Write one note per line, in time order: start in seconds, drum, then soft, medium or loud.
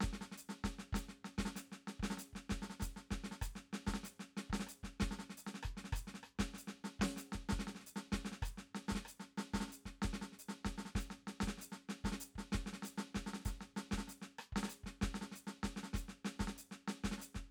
0.01 kick soft
0.01 snare medium
0.13 snare soft
0.21 snare soft
0.32 snare soft
0.38 hi-hat pedal medium
0.49 snare soft
0.64 kick soft
0.64 snare medium
0.79 snare soft
0.93 kick soft
0.93 snare medium
0.93 hi-hat pedal medium
1.09 snare soft
1.25 snare soft
1.38 kick soft
1.38 snare medium
1.46 snare medium
1.56 snare soft
1.56 hi-hat pedal medium
1.72 snare soft
1.88 snare soft
2.00 kick soft
2.00 snare medium
2.11 snare medium
2.18 snare soft
2.18 hi-hat pedal medium
2.33 kick soft
2.33 snare soft
2.50 kick soft
2.50 snare medium
2.62 snare soft
2.70 snare soft
2.80 kick soft
2.80 snare soft
2.80 hi-hat pedal medium
2.97 snare soft
3.11 kick soft
3.11 snare medium
3.24 snare soft
3.32 snare soft
3.42 kick soft
3.42 cross-stick medium
3.42 hi-hat pedal medium
3.56 snare soft
3.73 snare soft
3.87 kick soft
3.87 snare medium
3.94 snare soft
4.04 snare soft
4.04 hi-hat pedal medium
4.20 snare soft
4.37 snare soft
4.50 kick soft
4.50 snare medium
4.60 snare soft
4.67 cross-stick soft
4.67 hi-hat pedal medium
4.84 kick soft
4.84 snare soft
5.00 kick soft
5.00 snare medium
5.11 snare soft
5.19 snare soft
5.30 snare soft
5.38 snare soft
5.38 hi-hat pedal medium
5.47 snare soft
5.55 snare soft
5.63 kick soft
5.63 cross-stick medium
5.77 snare soft
5.85 snare soft
5.92 kick soft
5.92 cross-stick medium
5.92 snare soft
5.96 hi-hat pedal medium
6.00 kick soft
6.08 snare soft
6.15 snare soft
6.23 cross-stick soft
6.39 kick soft
6.39 snare medium
6.54 snare soft
6.58 hi-hat pedal medium
6.68 snare soft
6.85 snare soft
7.00 kick soft
7.00 snare medium
7.17 snare soft
7.17 hi-hat pedal medium
7.33 kick soft
7.33 snare soft
7.49 kick soft
7.49 snare medium
7.67 snare soft
7.75 snare soft
7.79 snare soft
7.87 hi-hat pedal medium
7.96 snare soft
8.12 kick soft
8.12 snare medium
8.25 snare soft
8.32 snare soft
8.43 kick soft
8.43 cross-stick medium
8.43 hi-hat pedal soft
8.58 snare soft
8.75 snare soft
8.89 kick soft
8.89 snare medium
8.95 snare medium
9.06 cross-stick soft
9.06 hi-hat pedal medium
9.20 snare soft
9.38 snare medium
9.54 kick soft
9.54 snare medium
9.61 snare medium
9.68 snare soft
9.73 hi-hat pedal medium
9.86 kick soft
9.86 snare soft
10.02 kick soft
10.02 snare medium
10.14 snare soft
10.22 snare soft
10.33 snare soft
10.39 hi-hat pedal medium
10.49 snare soft
10.65 kick soft
10.65 snare medium
10.78 snare soft
10.86 snare soft
10.96 kick soft
11.00 hi-hat pedal soft
11.11 snare soft
11.28 snare soft
11.41 kick soft
11.41 snare medium
11.48 snare medium
11.58 snare soft
11.58 hi-hat pedal medium
11.72 snare soft
11.89 snare soft
12.05 kick soft
12.05 snare medium
12.12 snare soft
12.21 cross-stick soft
12.21 hi-hat pedal medium
12.36 kick soft
12.36 snare soft
12.53 kick soft
12.53 snare medium
12.67 snare soft
12.73 snare soft
12.83 snare soft
12.83 hi-hat pedal medium
12.98 snare medium
13.15 kick soft
13.15 snare medium
13.27 snare soft
13.34 snare soft
13.41 snare soft
13.45 kick soft
13.45 snare soft
13.45 hi-hat pedal medium
13.61 snare soft
13.77 snare medium
13.92 kick soft
13.92 snare medium
13.98 snare soft
14.08 snare soft
14.08 hi-hat pedal medium
14.22 snare soft
14.39 cross-stick medium
14.53 kick soft
14.53 snare medium
14.63 snare medium
14.69 cross-stick soft
14.69 hi-hat pedal medium
14.84 kick soft
14.84 snare soft
15.02 kick soft
15.02 snare medium
15.15 snare soft
15.22 snare soft
15.32 snare soft
15.32 hi-hat pedal medium
15.47 snare soft
15.64 kick soft
15.64 snare medium
15.77 snare soft
15.84 snare soft
15.95 kick soft
15.95 hi-hat pedal medium
16.09 snare soft
16.25 snare medium
16.40 kick soft
16.40 snare medium
16.48 snare soft
16.56 cross-stick soft
16.56 hi-hat pedal medium
16.72 snare soft
16.88 snare medium
17.04 kick soft
17.04 snare medium
17.12 snare soft
17.18 snare soft
17.18 hi-hat pedal medium
17.35 kick soft
17.35 snare soft